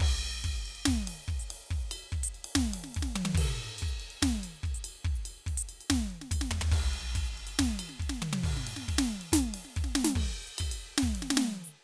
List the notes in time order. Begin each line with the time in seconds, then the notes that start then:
0.01 kick, crash
0.22 ride
0.33 closed hi-hat
0.45 kick, ride
0.56 closed hi-hat
0.66 ride
0.76 ride bell
0.86 kick, snare
1.08 ride
1.22 closed hi-hat
1.29 kick, ride
1.40 closed hi-hat
1.51 ride
1.61 closed hi-hat
1.71 kick, ride
1.81 closed hi-hat
1.92 ride bell
2.04 closed hi-hat
2.13 kick, ride
2.24 closed hi-hat
2.35 ride bell
2.45 ride
2.56 kick, snare
2.74 ride
2.85 snare
2.95 kick, ride
3.03 snare
3.16 high tom
3.26 high tom
3.35 kick, crash
3.49 closed hi-hat
3.60 ride
3.69 closed hi-hat
3.79 kick, ride bell
3.89 closed hi-hat
4.01 ride
4.11 ride
4.23 kick, snare
4.44 ride bell
4.56 closed hi-hat
4.64 kick, ride bell
4.75 closed hi-hat
4.85 ride bell
5.05 kick, ride
5.16 closed hi-hat
5.26 ride bell
5.41 closed hi-hat
5.47 kick, ride
5.58 closed hi-hat
5.70 ride bell
5.81 ride bell
5.91 kick, snare
6.11 snare, ride
6.22 snare
6.32 kick, ride bell
6.42 snare
6.52 floor tom
6.62 floor tom
6.72 kick, crash
6.85 closed hi-hat
6.94 ride
7.04 closed hi-hat
7.16 kick, ride bell
7.26 closed hi-hat
7.38 ride
7.48 ride bell
7.60 kick, snare
7.80 ride bell
7.90 snare
8.00 kick, ride
8.10 snare
8.23 mid tom
8.34 high tom
8.44 kick, crash
8.57 snare
8.68 ride
8.77 snare
8.89 kick, ride
8.99 snare
9.11 ride
9.22 ride
9.33 kick, snare
9.55 ride
9.66 snare
9.77 kick, ride
9.85 snare
9.96 snare
10.05 snare
10.16 kick, crash
10.29 closed hi-hat
10.48 closed hi-hat
10.59 kick, ride bell
10.72 ride bell
10.99 snare
11.03 kick
11.16 ride
11.23 snare
11.31 snare
11.38 snare
11.65 hi-hat pedal